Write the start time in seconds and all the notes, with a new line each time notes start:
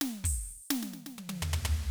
0.01 snare
0.24 open hi-hat, kick
0.67 snare, hi-hat pedal
0.83 snare
0.93 snare
1.06 snare
1.18 high tom
1.29 high tom
1.42 floor tom
1.53 floor tom
1.65 floor tom